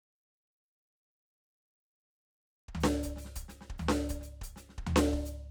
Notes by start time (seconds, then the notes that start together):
2.68 kick
2.75 floor tom
2.80 snare, hi-hat pedal
3.03 closed hi-hat, kick
3.16 snare, hi-hat pedal
3.25 snare
3.36 closed hi-hat, kick
3.48 snare, hi-hat pedal
3.61 snare
3.70 kick
3.78 floor tom, hi-hat pedal
3.88 snare
4.09 closed hi-hat, kick
4.20 snare, hi-hat pedal
4.41 closed hi-hat, kick
4.56 snare, hi-hat pedal
4.69 snare
4.78 kick
4.87 floor tom
4.96 snare
5.13 kick
5.25 hi-hat pedal